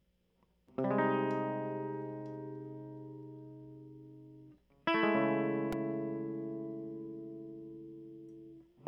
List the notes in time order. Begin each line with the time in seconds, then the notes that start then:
0.69 B2
0.80 C3
0.85 G3
0.91 G#3
0.99 D#4
4.88 E4
4.95 A3
5.04 G#3
5.16 C#3 G4
5.22 E2